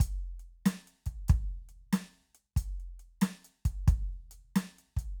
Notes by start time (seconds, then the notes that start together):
0.00 kick, closed hi-hat
0.26 closed hi-hat
0.40 closed hi-hat
0.66 snare, closed hi-hat
0.87 closed hi-hat
1.06 kick, closed hi-hat
1.28 kick, closed hi-hat
1.69 closed hi-hat
1.93 snare, closed hi-hat
2.35 closed hi-hat
2.56 kick, closed hi-hat
2.80 closed hi-hat
2.99 closed hi-hat
3.21 snare, closed hi-hat
3.45 closed hi-hat
3.65 kick, closed hi-hat
3.88 kick, closed hi-hat
4.13 closed hi-hat
4.31 closed hi-hat
4.56 snare, closed hi-hat
4.79 closed hi-hat
4.97 kick, closed hi-hat